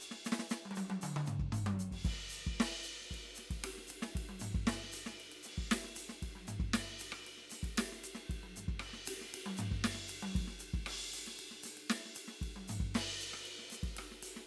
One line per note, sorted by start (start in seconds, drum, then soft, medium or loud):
0.01 hi-hat pedal medium
0.01 ride medium
0.12 snare soft
0.25 snare medium
0.25 hi-hat pedal loud
0.33 snare medium
0.40 snare medium
0.50 snare medium
0.50 hi-hat pedal loud
0.66 high tom medium
0.72 hi-hat pedal medium
0.72 high tom medium
0.78 high tom medium
0.91 high tom medium
1.02 hi-hat pedal loud
1.02 mid tom medium
1.17 mid tom loud
1.27 floor tom medium
1.27 hi-hat pedal medium
1.40 kick soft
1.53 floor tom loud
1.53 hi-hat pedal medium
1.67 high tom loud
1.80 hi-hat pedal medium
1.92 kick soft
1.92 ride medium
2.04 kick medium
2.04 hi-hat pedal medium
2.04 crash medium
2.30 hi-hat pedal medium
2.47 kick soft
2.61 snare loud
2.61 crash medium
2.84 hi-hat pedal medium
3.02 snare soft
3.08 kick soft
3.08 hi-hat pedal soft
3.15 ride medium
3.25 snare soft
3.36 snare soft
3.36 hi-hat pedal medium
3.36 ride medium
3.51 kick soft
3.51 ride medium
3.60 hi-hat pedal soft
3.64 cross-stick medium
3.64 ride loud
3.78 snare soft
3.88 hi-hat pedal medium
3.88 ride medium
4.03 snare medium
4.16 kick soft
4.16 ride medium
4.30 high tom medium
4.40 floor tom medium
4.40 hi-hat pedal medium
4.55 kick medium
4.64 kick soft
4.64 snare loud
4.64 crash medium
4.74 snare soft
4.84 snare soft
4.92 hi-hat pedal medium
4.92 ride medium
5.07 snare medium
5.12 snare soft
5.21 ride soft
5.33 ride medium
5.44 snare soft
5.44 hi-hat pedal medium
5.44 ride medium
5.59 kick soft
5.72 snare loud
5.72 ride loud
5.85 snare soft
5.96 hi-hat pedal medium
5.96 ride medium
6.10 snare soft
6.23 kick soft
6.23 ride medium
6.36 high tom soft
6.48 floor tom medium
6.48 hi-hat pedal medium
6.60 kick medium
6.74 snare loud
6.74 crash medium
6.91 snare soft
6.99 hi-hat pedal medium
6.99 ride medium
7.13 cross-stick medium
7.27 ride medium
7.38 snare soft
7.50 snare soft
7.50 hi-hat pedal medium
7.50 ride medium
7.64 kick soft
7.64 ride medium
7.78 snare medium
7.78 ride loud
7.93 snare soft
8.04 hi-hat pedal loud
8.04 ride medium
8.15 snare soft
8.30 kick soft
8.30 ride medium
8.44 high tom soft
8.57 floor tom soft
8.57 hi-hat pedal loud
8.69 kick soft
8.80 cross-stick medium
8.80 crash medium
8.94 snare soft
9.06 hi-hat pedal loud
9.06 ride loud
9.22 snare soft
9.35 ride loud
9.47 high tom medium
9.58 floor tom medium
9.58 hi-hat pedal loud
9.72 kick soft
9.85 snare medium
9.85 ride medium
9.95 snare soft
9.99 snare soft
10.08 hi-hat pedal medium
10.08 ride medium
10.23 high tom medium
10.33 kick medium
10.33 hi-hat pedal soft
10.37 ride medium
10.48 snare soft
10.60 hi-hat pedal medium
10.60 ride medium
10.74 kick medium
10.87 cross-stick medium
10.87 ride loud
11.13 hi-hat pedal loud
11.13 ride medium
11.27 snare soft
11.27 ride medium
11.40 ride medium
11.52 snare soft
11.63 snare soft
11.63 hi-hat pedal loud
11.63 ride medium
11.78 ride medium
11.90 snare medium
11.90 ride medium
12.06 snare soft
12.15 hi-hat pedal loud
12.15 ride medium
12.28 snare soft
12.42 kick soft
12.42 ride medium
12.57 high tom medium
12.69 floor tom medium
12.69 hi-hat pedal loud
12.81 kick medium
12.95 snare medium
12.95 crash loud
13.21 hi-hat pedal medium
13.21 ride soft
13.34 cross-stick medium
13.46 ride medium
13.59 snare soft
13.71 snare soft
13.71 hi-hat pedal loud
13.71 ride medium
13.84 kick soft
13.84 ride soft
13.96 cross-stick medium
13.96 hi-hat pedal soft
13.96 ride medium
14.12 snare soft
14.23 hi-hat pedal loud
14.23 ride medium
14.37 snare soft